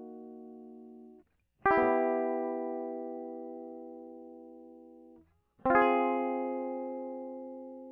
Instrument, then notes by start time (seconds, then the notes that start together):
electric guitar
1.66 G4
1.71 E4
1.78 B3
1.84 A2
5.66 C4
5.71 F4
5.76 G#4